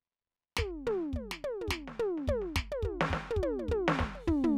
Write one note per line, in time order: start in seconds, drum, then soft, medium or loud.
0.57 kick medium
0.57 snare loud
0.57 mid tom medium
0.86 snare soft
0.86 mid tom loud
1.13 kick soft
1.13 high tom medium
1.31 snare medium
1.44 high tom loud
1.61 mid tom medium
1.68 kick soft
1.68 snare loud
1.88 snare soft
1.99 mid tom loud
2.18 snare soft
2.28 kick medium
2.28 high tom loud
2.42 snare soft
2.56 kick medium
2.56 snare loud
2.71 high tom loud
2.83 kick medium
2.83 mid tom medium
3.01 snare loud
3.10 kick soft
3.10 snare medium
3.30 mid tom loud
3.36 kick medium
3.42 high tom loud
3.59 high tom medium
3.68 kick soft
3.68 mid tom loud
3.88 snare loud
3.99 kick medium
3.99 snare medium
4.15 crash soft
4.15 high tom soft
4.27 kick soft
4.27 floor tom loud
4.43 floor tom loud